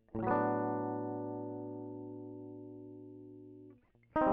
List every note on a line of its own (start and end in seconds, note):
0.17 3.79 A2
0.24 3.77 F#3
0.24 3.84 B3
0.32 3.77 D4
4.17 4.34 D#4
4.22 4.34 C4
4.28 4.34 G3